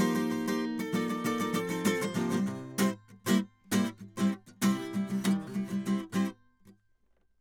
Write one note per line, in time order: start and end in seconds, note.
0.00 0.92 F3
0.00 0.18 A#3
0.00 0.18 D#4
0.00 0.17 G4
0.00 0.18 C5
0.18 0.50 A#3
0.18 0.50 D#4
0.18 0.32 G4
0.18 0.33 C5
0.32 0.49 G4
0.32 0.50 C5
0.50 0.82 A#3
0.50 0.81 D#4
0.50 0.70 G4
0.50 0.71 C5
0.81 0.95 A#3
0.81 0.96 D#4
0.81 0.96 A4
0.95 1.42 F3
0.95 1.12 A#3
0.95 1.10 D#4
0.95 1.10 A4
0.95 1.09 D5
1.10 1.26 A#3
1.10 1.26 D#4
1.10 1.27 A4
1.10 1.27 D5
1.26 1.43 A#3
1.26 1.41 D#4
1.26 1.40 A4
1.26 1.39 D5
1.40 1.55 F3
1.40 1.55 A#3
1.40 1.56 D#4
1.40 1.55 A4
1.40 1.65 D5
1.55 1.73 F3
1.55 1.73 C4
1.55 1.65 D#4
1.55 1.69 A4
1.72 2.00 F3
1.72 1.87 C4
1.72 1.85 D#4
1.72 1.88 A4
1.87 2.04 C4
1.87 1.98 D#4
1.87 2.08 A4
1.87 2.01 C5
2.04 2.13 C3
2.04 2.16 F3
2.04 2.19 C5
2.16 2.35 C3
2.16 2.35 F3
2.16 2.34 A#3
2.16 2.31 D#4
2.16 2.32 G4
2.16 2.32 C5
2.32 2.80 C3
2.32 2.47 G3
2.32 2.41 A#3
2.32 2.80 E4
2.32 2.46 G4
2.32 2.43 C5
2.42 2.81 C4
2.80 2.94 C3
2.80 2.98 G3
2.80 2.96 C4
2.80 3.00 E4
2.80 2.93 G4
2.80 2.98 C5
3.28 3.45 C3
3.28 3.47 G3
3.28 3.48 A#3
3.28 3.50 E4
3.28 3.40 G4
3.28 3.52 C5
3.74 3.93 C3
3.74 3.96 G3
3.74 3.96 A#3
3.74 3.98 E4
3.74 3.86 G4
3.74 3.99 C5
4.19 4.39 C3
4.19 4.28 G3
4.19 4.39 C4
4.19 4.41 E4
4.19 4.27 F#4
4.19 4.44 C5
4.64 4.93 C3
4.64 4.72 G3
4.64 4.82 C4
4.64 4.97 E4
4.64 4.82 G4
4.64 4.80 C5
4.95 5.12 C3
4.95 5.08 G3
4.95 5.08 E4
5.10 5.25 C3
5.10 5.27 G3
5.10 5.27 E4
5.26 5.34 C3
5.26 5.50 G3
5.26 5.41 E4
5.34 5.47 D#3
5.49 5.62 C3
5.57 5.68 G3
5.57 5.72 A#3
5.57 5.70 E4
5.69 5.85 C3
5.69 5.86 G3
5.69 5.84 C4
5.69 5.89 E4
5.69 5.77 C5
5.77 5.88 C5
5.88 6.03 C3
5.88 5.95 G3
5.88 6.06 C4
5.88 6.09 E4
5.88 6.08 C5
6.14 6.33 C3
6.14 6.35 G3
6.14 6.37 C4
6.14 6.40 E4
6.14 6.42 C5